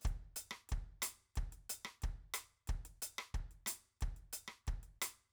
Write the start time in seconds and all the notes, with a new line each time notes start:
0.01 kick, hi-hat pedal
0.07 closed hi-hat
0.36 closed hi-hat
0.51 cross-stick
0.69 kick, closed hi-hat
1.02 closed hi-hat, cross-stick
1.36 kick, closed hi-hat
1.52 closed hi-hat
1.69 closed hi-hat
1.85 cross-stick
2.02 kick, closed hi-hat
2.34 closed hi-hat, cross-stick
2.67 kick, closed hi-hat
2.85 closed hi-hat
3.02 closed hi-hat
3.18 cross-stick
3.34 kick, closed hi-hat
3.51 closed hi-hat
3.66 closed hi-hat, cross-stick
4.01 kick, closed hi-hat
4.16 closed hi-hat
4.33 closed hi-hat
4.48 cross-stick
4.67 kick, closed hi-hat
4.83 closed hi-hat
5.02 open hi-hat, cross-stick